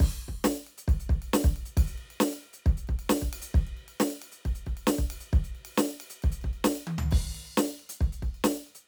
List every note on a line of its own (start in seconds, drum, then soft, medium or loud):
0.01 kick loud
0.01 crash medium
0.12 closed hi-hat medium
0.23 ride soft
0.29 kick medium
0.35 ride soft
0.45 snare loud
0.56 ride medium
0.67 ride medium
0.79 closed hi-hat medium
0.89 kick loud
0.89 ride medium
1.01 closed hi-hat soft
1.10 kick loud
1.10 ride soft
1.23 ride medium
1.34 snare loud
1.44 kick loud
1.44 ride medium
1.57 ride medium
1.66 closed hi-hat medium
1.78 kick loud
1.78 ride loud
1.88 closed hi-hat medium
1.99 ride soft
2.11 ride medium
2.21 snare loud
2.34 ride medium
2.44 ride soft
2.54 closed hi-hat medium
2.67 kick loud
2.67 ride soft
2.78 closed hi-hat medium
2.88 kick medium
2.88 ride soft
3.00 ride medium
3.10 snare loud
3.22 kick medium
3.22 ride medium
3.34 ride loud
3.43 closed hi-hat loud
3.55 kick loud
3.55 ride medium
3.67 closed hi-hat soft
3.78 ride soft
3.89 ride medium
4.01 snare loud
4.11 ride medium
4.23 ride medium
4.33 closed hi-hat medium
4.46 kick medium
4.46 ride medium
4.56 closed hi-hat medium
4.67 kick medium
4.67 ride soft
4.78 ride medium
4.88 snare loud
4.99 kick loud
4.99 ride medium
5.11 ride loud
5.21 closed hi-hat medium
5.34 kick loud
5.34 ride soft
5.45 closed hi-hat soft
5.56 ride soft
5.66 ride loud
5.76 snare loud
5.76 hi-hat pedal soft
5.90 ride medium
6.01 ride loud
6.11 closed hi-hat medium
6.23 kick loud
6.23 ride medium
6.33 closed hi-hat medium
6.42 kick medium
6.42 ride bell soft
6.54 ride bell soft
6.65 snare loud
6.76 ride bell medium
6.88 high tom loud
6.99 floor tom loud
7.12 kick loud
7.12 crash loud
7.36 ride medium
7.46 ride soft
7.58 snare loud
7.80 ride soft
7.90 closed hi-hat loud
8.02 kick loud
8.02 ride soft
8.13 closed hi-hat medium
8.23 kick medium
8.23 ride soft
8.35 ride bell soft
8.45 snare loud
8.57 ride soft
8.67 ride bell soft
8.76 closed hi-hat medium